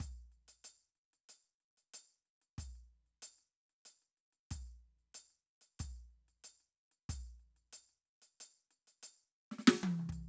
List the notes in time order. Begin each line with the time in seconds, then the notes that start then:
0.00 kick, percussion
0.32 percussion
0.48 percussion
0.64 percussion
0.81 percussion
0.95 percussion
1.13 percussion
1.29 percussion
1.60 percussion
1.77 percussion
1.94 percussion
2.10 percussion
2.26 percussion
2.42 percussion
2.58 kick, percussion
2.75 percussion
3.06 percussion
3.22 percussion
3.38 percussion
3.54 percussion
3.70 percussion
3.85 percussion
4.02 percussion
4.17 percussion
4.33 percussion
4.51 kick, percussion
4.67 percussion
4.99 percussion
5.15 percussion
5.30 percussion
5.46 percussion
5.61 percussion
5.79 kick, percussion
5.97 percussion
6.10 percussion
6.28 percussion
6.44 percussion
6.60 percussion
6.76 percussion
6.92 percussion
7.09 kick, percussion
7.27 percussion
7.40 percussion
7.56 percussion
7.73 percussion
7.89 percussion
8.06 percussion
8.22 percussion
8.40 percussion
8.71 percussion
8.87 percussion
9.03 percussion
9.16 percussion
9.51 snare
9.59 snare, percussion
9.67 snare
9.83 high tom
9.99 mid tom
10.09 kick, percussion